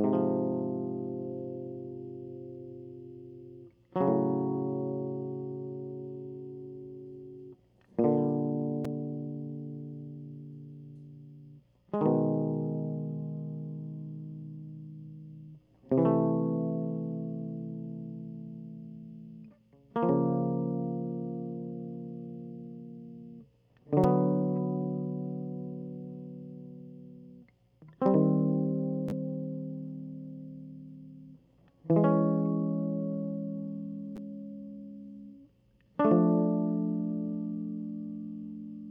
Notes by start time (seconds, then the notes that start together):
0.00 G#2
0.05 C3
0.13 F3
3.96 F#3
4.01 C#3
4.09 A2
8.00 A#2
8.05 D3
8.18 G3
11.94 G#3
12.02 D#3
12.07 B2
15.92 C3
15.98 E3
16.05 A3
19.96 A#3
20.03 F3
20.10 C#3
23.94 D3 F#3
24.05 B3
27.83 D#3
28.02 C4
28.06 G3
28.15 D#3
31.91 E3
31.97 G#3
32.04 C#4
35.99 D4
36.05 A3
36.12 F3